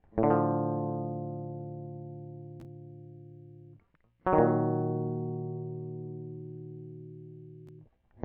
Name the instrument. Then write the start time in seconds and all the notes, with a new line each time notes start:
electric guitar
0.19 A2
0.24 D3
0.31 F3
4.27 F#3
4.34 D#3
4.40 A#2